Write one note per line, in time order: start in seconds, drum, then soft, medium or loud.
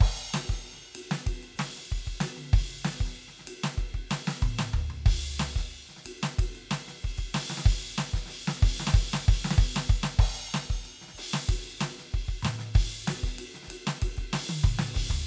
0.01 kick loud
0.01 crash loud
0.34 snare loud
0.34 hi-hat pedal medium
0.34 ride loud
0.50 kick medium
0.50 snare soft
0.63 hi-hat pedal soft
0.63 ride soft
0.73 snare soft
0.77 snare soft
0.83 snare soft
0.94 hi-hat pedal soft
0.94 ride loud
1.03 kick soft
1.11 snare loud
1.27 kick medium
1.27 ride loud
1.43 ride medium
1.55 kick soft
1.55 hi-hat pedal medium
1.59 snare loud
1.59 ride loud
1.77 snare soft
1.91 kick medium
1.91 ride medium
2.07 kick medium
2.21 snare loud
2.21 hi-hat pedal medium
2.21 ride loud
2.37 high tom medium
2.53 kick loud
2.53 ride loud
2.85 snare loud
2.85 hi-hat pedal medium
2.85 ride medium
3.01 kick medium
3.06 snare soft
3.17 ride soft
3.28 snare soft
3.39 snare soft
3.44 kick soft
3.44 snare soft
3.44 hi-hat pedal medium
3.48 ride loud
3.64 snare loud
3.78 kick medium
3.78 ride medium
3.95 kick medium
3.95 ride soft
4.10 snare loud
4.10 hi-hat pedal medium
4.10 ride medium
4.28 snare loud
4.43 kick loud
4.43 mid tom loud
4.59 snare loud
4.74 kick medium
4.74 floor tom loud
4.90 floor tom loud
5.06 kick loud
5.06 ride loud
5.38 snare loud
5.38 hi-hat pedal medium
5.38 ride medium
5.56 kick medium
5.56 snare medium
5.69 hi-hat pedal soft
5.89 snare soft
5.97 snare soft
6.04 kick soft
6.04 hi-hat pedal medium
6.04 ride loud
6.23 snare loud
6.39 kick loud
6.39 ride loud
6.55 ride medium
6.70 kick soft
6.70 snare loud
6.70 hi-hat pedal medium
6.70 ride medium
6.88 snare medium
7.03 kick medium
7.03 ride medium
7.18 kick medium
7.18 ride bell medium
7.34 snare loud
7.34 hi-hat pedal medium
7.34 ride loud
7.50 snare medium
7.58 snare medium
7.65 kick loud
7.65 ride loud
7.74 hi-hat pedal soft
7.98 snare loud
7.98 hi-hat pedal medium
8.14 kick medium
8.14 snare medium
8.26 snare medium
8.26 hi-hat pedal medium
8.26 ride loud
8.48 snare loud
8.61 kick loud
8.61 hi-hat pedal medium
8.61 ride loud
8.80 snare medium
8.87 snare loud
8.94 kick loud
8.94 ride loud
9.14 snare loud
9.29 kick loud
9.29 ride loud
9.45 snare loud
9.51 snare loud
9.58 kick loud
9.58 ride loud
9.76 snare loud
9.90 kick loud
9.90 snare soft
10.04 snare loud
10.19 kick loud
10.19 crash loud
10.54 snare loud
10.54 hi-hat pedal medium
10.70 kick medium
10.70 snare soft
10.83 hi-hat pedal soft
10.83 ride medium
11.02 snare soft
11.09 snare soft
11.15 kick soft
11.15 hi-hat pedal medium
11.15 ride loud
11.34 snare loud
11.49 kick medium
11.49 ride loud
11.65 ride soft
11.79 kick soft
11.79 snare loud
11.79 hi-hat pedal medium
11.79 ride loud
11.99 snare soft
12.13 kick medium
12.13 ride medium
12.29 kick medium
12.43 snare loud
12.43 hi-hat pedal medium
12.43 mid tom loud
12.59 snare medium
12.75 kick loud
12.75 ride loud
13.03 kick soft
13.03 hi-hat pedal medium
13.08 snare loud
13.08 ride loud
13.24 kick medium
13.24 snare soft
13.39 ride loud
13.55 snare medium
13.63 snare soft
13.65 kick soft
13.65 snare soft
13.68 snare soft
13.68 hi-hat pedal medium
13.68 ride loud
13.87 snare loud
13.97 snare soft
14.02 kick medium
14.02 ride loud
14.17 kick medium
14.17 ride medium
14.33 snare loud
14.33 hi-hat pedal medium
14.33 ride loud
14.50 high tom loud
14.64 kick loud
14.64 hi-hat pedal medium
14.64 mid tom loud
14.79 snare loud
14.94 kick medium
14.94 hi-hat pedal medium
14.94 ride loud
15.10 kick medium
15.10 floor tom loud